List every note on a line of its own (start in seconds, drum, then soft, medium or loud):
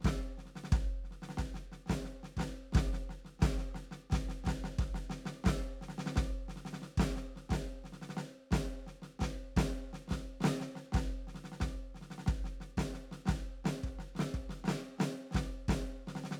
0.01 kick medium
0.01 snare soft
0.06 snare medium
0.38 snare soft
0.46 snare soft
0.56 snare soft
0.64 snare soft
0.72 kick loud
0.72 snare medium
1.04 snare soft
1.11 snare soft
1.22 snare soft
1.29 snare soft
1.38 kick medium
1.38 snare medium
1.55 snare soft
1.72 snare soft
1.86 kick soft
1.86 snare soft
1.90 snare medium
2.05 snare soft
2.23 snare soft
2.37 kick soft
2.37 snare soft
2.40 snare medium
2.73 kick loud
2.73 snare soft
2.76 snare medium
2.93 snare soft
3.10 snare soft
3.25 snare soft
3.40 snare soft
3.42 kick medium
3.42 snare medium
3.58 snare soft
3.75 snare soft
3.91 snare soft
4.10 kick medium
4.10 snare soft
4.13 snare medium
4.29 snare soft
4.44 kick medium
4.44 snare soft
4.48 snare medium
4.64 snare soft
4.79 kick medium
4.79 snare soft
4.95 snare soft
5.10 snare medium
5.26 snare medium
5.44 kick medium
5.44 snare medium
5.46 snare medium
5.82 snare soft
5.89 snare soft
5.98 snare medium
6.06 snare medium
6.16 kick medium
6.16 snare medium
6.49 snare soft
6.56 snare soft
6.65 snare soft
6.73 snare soft
6.82 snare soft
6.98 kick medium
6.98 snare soft
7.00 snare medium
7.16 snare soft
7.36 snare soft
7.50 kick medium
7.50 snare soft
7.52 snare medium
7.84 snare soft
7.93 snare soft
8.02 snare soft
8.09 snare soft
8.17 snare medium
8.51 kick medium
8.51 snare soft
8.53 snare medium
8.87 snare soft
9.02 snare soft
9.20 kick medium
9.20 snare soft
9.22 snare medium
9.57 kick medium
9.57 snare soft
9.57 snare loud
9.93 snare soft
10.08 snare soft
10.11 kick soft
10.11 snare medium
10.41 snare medium
10.44 snare loud
10.61 snare soft
10.76 snare soft
10.93 kick medium
10.93 snare soft
10.96 snare medium
11.27 snare soft
11.35 snare soft
11.44 snare soft
11.52 snare soft
11.61 kick medium
11.61 snare medium
11.95 snare soft
12.02 snare soft
12.11 snare soft
12.18 snare soft
12.27 kick medium
12.27 snare medium
12.45 snare soft
12.61 snare soft
12.78 kick soft
12.78 snare soft
12.78 snare medium
12.94 snare soft
13.12 snare soft
13.26 snare soft
13.28 kick medium
13.28 snare medium
13.65 snare soft
13.65 snare medium
13.84 kick medium
13.84 snare soft
13.99 snare soft
14.15 snare soft
14.19 snare medium
14.34 kick medium
14.34 snare soft
14.50 snare soft
14.64 snare soft
14.68 snare medium
14.99 snare soft
15.00 snare medium
15.31 kick medium
15.31 snare soft
15.35 snare medium
15.69 kick medium
15.69 snare soft
15.69 snare medium
16.08 snare soft
16.16 snare soft
16.24 snare soft
16.31 snare medium